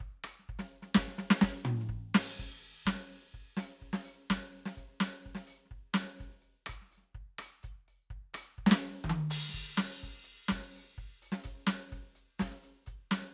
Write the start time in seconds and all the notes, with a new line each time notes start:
0.01 kick, closed hi-hat
0.25 open hi-hat, cross-stick
0.40 snare
0.49 kick, closed hi-hat
0.60 snare
0.72 open hi-hat
0.83 snare
0.95 kick, snare
1.08 snare
1.19 snare
1.31 snare
1.42 kick, snare
1.57 snare
1.66 mid tom
1.81 snare
1.90 kick
2.15 snare, crash
2.40 kick
2.49 snare
2.61 open hi-hat
2.86 closed hi-hat, kick, snare
2.96 snare
3.12 open hi-hat
3.21 snare
3.35 kick, closed hi-hat
3.58 open hi-hat, snare
3.82 kick, closed hi-hat
3.94 snare
4.05 open hi-hat
4.31 open hi-hat, kick, snare
4.56 open hi-hat
4.66 snare
4.78 open hi-hat, kick
5.01 open hi-hat, snare
5.12 snare
5.26 kick, closed hi-hat
5.36 snare
5.47 open hi-hat
5.66 snare
5.72 kick, closed hi-hat
5.94 open hi-hat, snare
6.04 snare
6.18 open hi-hat, kick
6.25 snare
6.33 snare
6.40 snare, open hi-hat
6.67 open hi-hat, kick, cross-stick
6.82 snare
6.92 open hi-hat
6.98 snare
7.03 snare
7.15 kick, closed hi-hat
7.39 open hi-hat, cross-stick
7.64 closed hi-hat, kick
7.89 open hi-hat
8.11 kick, closed hi-hat
8.34 open hi-hat, cross-stick
8.59 kick
8.67 snare
8.71 snare
9.05 kick, high tom
9.10 high tom
9.29 high tom, crash
9.49 snare
9.55 kick
9.77 open hi-hat, snare
10.00 kick, open hi-hat
10.09 snare
10.12 snare
10.25 open hi-hat
10.49 open hi-hat, kick, snare
10.60 snare
10.73 open hi-hat, snare
10.79 snare
10.82 snare
10.99 kick, closed hi-hat
11.23 open hi-hat
11.33 snare
11.44 closed hi-hat, kick
11.67 open hi-hat, snare
11.93 closed hi-hat, kick
12.16 open hi-hat
12.40 open hi-hat, kick, snare
12.52 snare
12.64 open hi-hat
12.72 snare
12.78 snare
12.87 closed hi-hat, kick
13.12 open hi-hat, snare
13.22 snare